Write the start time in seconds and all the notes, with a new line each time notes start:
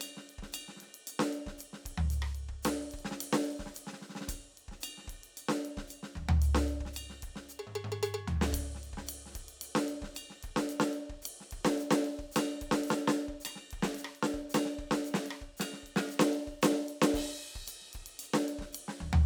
0.01 hi-hat pedal, ride bell
0.17 snare
0.29 ride
0.38 kick
0.42 snare
0.52 hi-hat pedal, ride bell
0.68 snare
0.76 snare, ride
0.81 snare
0.87 snare
0.94 ride
1.07 hi-hat pedal, ride bell
1.19 snare
1.33 ride
1.46 kick, snare
1.58 hi-hat pedal, ride
1.73 snare
1.85 kick, ride
1.98 floor tom
2.10 hi-hat pedal, ride
2.22 cross-stick
2.35 ride
2.49 kick
2.63 snare, hi-hat pedal, ride
2.80 snare
2.91 kick, ride
2.99 ride
3.05 snare
3.11 snare
3.21 hi-hat pedal, ride
3.33 snare
3.44 ride
3.51 ride
3.56 kick, snare, ride
3.66 snare
3.74 hi-hat pedal, ride
3.87 snare
3.93 snare
4.01 snare
4.09 snare
4.15 snare
4.21 snare
4.27 kick, snare, hi-hat pedal, ride bell
4.57 ride
4.68 kick, snare
4.81 hi-hat pedal, ride bell
4.97 snare
5.04 kick, snare
5.08 snare, ride
5.13 kick, snare
5.23 ride
5.37 hi-hat pedal, ride bell
5.49 snare
5.65 ride
5.77 kick, snare
5.88 hi-hat pedal, ride bell
6.03 snare
6.15 kick, floor tom
6.22 kick
6.29 floor tom
6.42 hi-hat pedal, ride
6.55 snare
6.68 ride
6.80 kick
6.85 snare
6.93 hi-hat pedal, ride bell
7.10 snare
7.22 kick, ride
7.36 snare
7.49 hi-hat pedal
7.59 percussion
7.67 mid tom
7.75 percussion
7.84 mid tom
7.92 percussion
8.03 hi-hat pedal, percussion
8.14 percussion
8.28 floor tom
8.41 snare
8.53 kick, hi-hat pedal, ride
8.65 kick
8.75 snare
8.83 ride
8.93 kick
8.97 snare
9.07 hi-hat pedal, ride
9.26 snare
9.29 snare
9.32 kick, snare, ride
9.40 kick
9.48 ride
9.61 hi-hat pedal, ride
9.75 snare
9.88 ride
10.02 kick, snare
10.15 hi-hat pedal, ride bell
10.30 snare
10.43 kick, ride
10.56 snare
10.69 hi-hat pedal, ride
10.80 snare
10.93 ride
11.09 kick, snare
11.22 hi-hat pedal, ride
11.40 snare
11.51 kick, ride
11.65 snare
11.78 hi-hat pedal, ride
11.91 snare
12.04 ride
12.19 kick
12.32 hi-hat pedal
12.36 snare, ride bell
12.61 kick, ride
12.71 snare
12.84 hi-hat pedal, ride
12.90 snare
12.99 ride
13.08 snare
13.28 kick
13.40 hi-hat pedal
13.45 cross-stick, ride bell
13.55 snare
13.71 kick, ride
13.78 kick
13.82 snare
13.95 hi-hat pedal, ride
14.05 cross-stick
14.15 ride
14.23 snare
14.34 kick
14.50 hi-hat pedal
14.54 snare, ride bell
14.65 snare
14.78 kick, ride
14.91 snare
15.05 hi-hat pedal, ride
15.14 snare
15.26 ride
15.31 cross-stick
15.42 kick
15.57 snare, hi-hat pedal
15.61 ride bell
15.73 snare
15.83 kick, ride
15.96 snare
16.09 hi-hat pedal, ride
16.19 snare
16.33 ride
16.47 kick
16.62 snare, hi-hat pedal, ride bell
16.72 snare
16.89 ride
17.02 snare
17.14 kick, hi-hat pedal, crash
17.26 kick
17.55 kick
17.67 hi-hat pedal, ride
17.81 snare
17.86 snare
17.93 kick, snare, ride
17.95 snare
18.06 ride
18.19 hi-hat pedal, ride bell
18.34 snare
18.48 ride
18.59 kick, snare
18.73 hi-hat pedal, ride
18.88 snare
19.00 kick, floor tom
19.13 floor tom